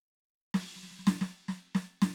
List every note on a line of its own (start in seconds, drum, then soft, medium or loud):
0.54 snare loud
0.54 ride loud
0.76 snare soft
0.83 snare soft
0.88 snare soft
0.91 snare soft
0.99 snare soft
1.05 snare soft
1.07 snare loud
1.21 snare loud
1.49 snare medium
1.75 snare loud
2.02 snare loud